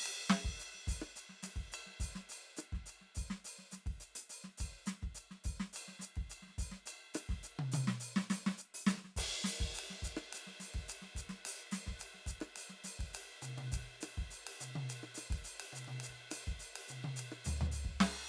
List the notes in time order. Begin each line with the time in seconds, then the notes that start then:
0.01 hi-hat pedal
0.06 ride
0.29 snare, hi-hat pedal
0.45 kick, snare
0.60 hi-hat pedal, ride bell
0.75 snare
0.88 kick, hi-hat pedal, ride
1.01 cross-stick, ride
1.16 hi-hat pedal, ride bell
1.30 snare
1.43 snare, hi-hat pedal, ride
1.56 kick, ride
1.72 hi-hat pedal, ride bell
1.87 snare
2.00 kick, hi-hat pedal, ride
2.16 snare, ride
2.29 hi-hat pedal, ride bell
2.57 cross-stick, hi-hat pedal, ride bell
2.73 kick, snare
2.86 hi-hat pedal, ride bell
3.02 snare
3.15 kick, hi-hat pedal, ride bell
3.30 snare, ride
3.45 hi-hat pedal, ride bell
3.59 snare
3.72 snare, hi-hat pedal, ride
3.86 kick, ride
4.00 hi-hat pedal, ride bell
4.16 open hi-hat
4.30 hi-hat pedal, ride bell
4.44 snare, ride
4.58 kick, hi-hat pedal, ride bell
4.86 snare, hi-hat pedal, ride
5.02 kick, snare
5.15 hi-hat pedal, ride bell
5.31 snare
5.44 kick, hi-hat pedal, ride
5.60 snare, ride
5.73 hi-hat pedal, ride bell
5.88 snare
6.00 snare, hi-hat pedal, ride
6.16 kick, ride
6.30 hi-hat pedal, ride bell
6.43 snare
6.47 snare
6.50 snare
6.52 snare
6.58 kick, hi-hat pedal, ride
6.72 snare, ride
6.86 hi-hat pedal, ride bell
7.14 cross-stick, hi-hat pedal, ride
7.29 kick, snare
7.44 cross-stick, hi-hat pedal, ride
7.59 high tom
7.72 hi-hat pedal, high tom
7.88 snare
8.00 hi-hat pedal
8.17 snare
8.30 snare, hi-hat pedal
8.47 snare
8.58 hi-hat pedal
8.75 open hi-hat
8.87 snare, hi-hat pedal
8.98 snare
9.05 snare
9.09 snare
9.17 kick, hi-hat pedal, ride
9.45 snare, hi-hat pedal
9.60 kick, snare
9.74 hi-hat pedal
9.79 ride
9.90 snare
10.03 kick, hi-hat pedal, ride
10.17 cross-stick, ride
10.33 hi-hat pedal, ride
10.47 snare
10.60 snare, hi-hat pedal, ride
10.74 kick, ride
10.89 hi-hat pedal, ride
11.02 snare
11.15 kick, hi-hat pedal, ride
11.30 snare, ride
11.46 hi-hat pedal, ride
11.72 snare, hi-hat pedal, ride
11.87 kick, snare
12.00 hi-hat pedal, ride
12.15 snare
12.27 kick, hi-hat pedal, ride
12.41 cross-stick, ride
12.56 hi-hat pedal, ride
12.70 snare
12.84 snare, hi-hat pedal, ride
13.00 kick, ride
13.14 hi-hat pedal, ride
13.42 hi-hat pedal, high tom, ride
13.58 high tom, ride
13.72 kick, hi-hat pedal, ride
14.01 cross-stick, hi-hat pedal, ride
14.18 kick
14.31 hi-hat pedal
14.47 ride
14.61 hi-hat pedal, high tom
14.76 high tom
14.90 hi-hat pedal, ride
15.04 cross-stick
15.15 cross-stick, hi-hat pedal
15.19 ride
15.30 kick, ride
15.45 hi-hat pedal
15.60 ride
15.73 hi-hat pedal, high tom
15.85 high tom, ride
16.00 hi-hat pedal, ride
16.09 kick
16.31 cross-stick, hi-hat pedal, ride
16.47 kick
16.60 hi-hat pedal
16.76 ride
16.89 hi-hat pedal, high tom
17.05 high tom
17.17 hi-hat pedal, ride
17.32 cross-stick
17.45 floor tom, hi-hat pedal
17.61 floor tom
17.72 hi-hat pedal
17.85 kick
18.01 snare, hi-hat pedal, crash